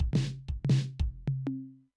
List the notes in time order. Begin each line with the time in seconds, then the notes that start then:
0.00 kick
0.13 snare, floor tom
0.48 kick
0.65 floor tom
0.69 snare
0.99 kick
1.27 floor tom
1.47 high tom